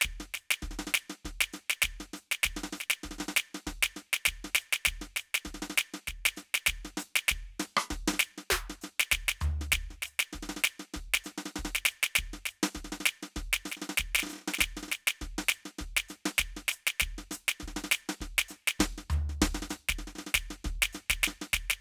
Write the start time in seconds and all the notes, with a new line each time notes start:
0.01 kick, snare
0.20 snare
0.34 snare, hi-hat pedal
0.50 snare
0.62 kick, snare
0.71 snare
0.79 snare
0.87 snare
0.94 snare, hi-hat pedal
1.09 snare
1.24 kick, snare
1.40 snare
1.53 snare, hi-hat pedal
1.70 snare
1.82 kick, snare
2.00 snare
2.13 snare, hi-hat pedal
2.31 snare
2.43 kick, snare
2.56 snare
2.63 snare
2.72 snare, hi-hat pedal
2.80 snare
2.90 snare
3.03 kick, snare
3.11 snare
3.18 snare
3.20 snare
3.28 snare
3.36 snare, hi-hat pedal
3.54 snare
3.67 kick, snare
3.82 snare
3.96 snare, hi-hat pedal
4.13 snare
4.25 kick, snare
4.44 snare
4.55 snare, hi-hat pedal
4.72 snare
4.85 kick, snare
5.01 snare
5.16 snare, hi-hat pedal
5.34 snare
5.45 kick, snare
5.54 snare
5.62 snare
5.70 snare
5.77 snare, hi-hat pedal
5.94 snare
6.07 kick, snare
6.25 snare
6.36 snare, hi-hat pedal
6.54 snare
6.66 kick, snare
6.85 snare
6.97 snare, hi-hat pedal
7.15 snare
7.28 kick, snare
7.59 snare, hi-hat pedal
7.77 cross-stick
7.90 kick, snare
7.96 kick
8.07 snare
8.13 snare
8.19 snare, hi-hat pedal
8.38 snare
8.50 kick, snare
8.69 snare
8.81 snare, hi-hat pedal
8.99 snare
9.11 kick, snare
9.28 snare
9.40 floor tom, hi-hat pedal
9.61 snare
9.72 kick, snare
9.90 snare
10.02 snare, hi-hat pedal
10.19 snare
10.33 kick, snare
10.42 snare
10.49 snare
10.56 snare
10.64 snare, hi-hat pedal
10.79 snare
10.94 kick, snare
11.14 snare
11.24 snare, hi-hat pedal
11.38 snare
11.45 snare
11.56 kick, snare
11.65 snare
11.75 snare
11.85 snare, hi-hat pedal
12.03 snare
12.15 kick, snare
12.33 snare
12.45 snare, hi-hat pedal
12.63 snare
12.74 kick, snare
12.84 snare
12.92 snare
13.00 snare
13.05 snare, hi-hat pedal
13.22 snare
13.36 kick, snare
13.42 kick
13.53 snare
13.65 snare, hi-hat pedal
13.71 snare
13.77 snare
13.81 snare
13.89 snare
13.97 kick, snare
14.15 snare
14.19 snare
14.23 snare
14.26 snare, hi-hat pedal
14.30 snare
14.33 snare
14.35 snare
14.38 snare
14.41 snare
14.47 snare
14.54 snare
14.58 kick, snare
14.60 snare
14.77 snare
14.83 snare
14.88 snare
14.91 snare, hi-hat pedal
15.07 snare
15.21 kick, snare
15.38 snare
15.48 snare, hi-hat pedal
15.65 snare
15.78 kick, snare
15.96 snare
16.08 snare, hi-hat pedal
16.25 snare
16.38 kick, snare
16.56 snare
16.68 snare, hi-hat pedal
16.87 snare
17.00 kick, snare
17.18 snare
17.31 kick, snare, hi-hat pedal
17.48 snare
17.60 kick, snare
17.67 snare
17.76 snare
17.84 snare
17.89 kick, snare, hi-hat pedal
18.09 snare
18.20 kick, snare
18.38 snare
18.48 snare, hi-hat pedal
18.67 snare
18.79 kick, snare
18.85 kick
18.98 snare
19.10 floor tom, hi-hat pedal
19.29 snare
19.42 kick, snare
19.48 kick
19.53 kick, snare
19.62 kick, snare
19.69 snare, hi-hat pedal
19.89 kick, snare
19.98 snare
20.07 snare
20.15 snare
20.18 snare
20.26 snare
20.34 kick, snare, hi-hat pedal
20.50 snare
20.64 kick, snare
20.72 kick
20.75 kick
20.82 snare
20.93 snare, hi-hat pedal
21.10 kick, snare
21.23 snare
21.27 snare
21.41 snare
21.53 kick, snare, hi-hat pedal
21.70 snare